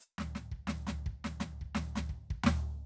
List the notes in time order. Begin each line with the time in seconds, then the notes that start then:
0.00 hi-hat pedal
0.18 snare, floor tom
0.35 snare, floor tom
0.51 kick
0.67 snare, floor tom
0.87 snare, floor tom
1.06 kick
1.24 snare, floor tom
1.40 snare, floor tom
1.61 kick
1.75 snare, floor tom
1.95 snare, floor tom
2.09 kick
2.30 kick
2.43 snare, floor tom